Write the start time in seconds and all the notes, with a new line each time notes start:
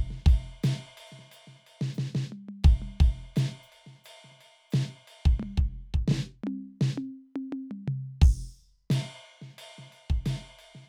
0.11 snare
0.26 kick, ride
0.63 snare, hi-hat pedal, ride
0.97 ride
1.07 ride
1.12 snare
1.19 snare
1.32 hi-hat pedal, ride
1.47 snare
1.67 ride
1.81 snare
1.94 hi-hat pedal
1.98 snare
2.15 snare
2.32 mid tom
2.49 mid tom
2.64 kick, ride
2.82 mid tom
3.00 kick, ride
3.36 snare, hi-hat pedal, ride
3.63 hi-hat pedal
3.72 ride
3.87 snare
4.04 hi-hat pedal, ride
4.24 snare
4.32 snare
4.41 ride
4.71 snare, hi-hat pedal, ride
5.08 ride
5.26 kick
5.40 mid tom
5.43 mid tom
5.58 kick
5.94 kick
6.08 kick, snare
6.12 snare
6.44 mid tom, high tom
6.81 snare
6.98 high tom
7.36 high tom
7.53 high tom
7.71 mid tom
7.88 floor tom
8.22 kick, crash
8.90 snare, ride
9.42 snare
9.59 ride bell
9.79 snare
9.92 ride
10.10 kick
10.26 snare, ride
10.37 snare
10.59 ride
10.75 snare